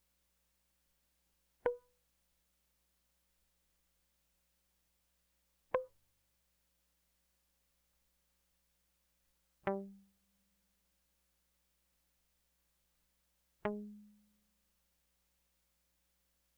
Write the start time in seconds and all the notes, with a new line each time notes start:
1.66 B4
5.75 C5
9.68 G3
13.66 G#3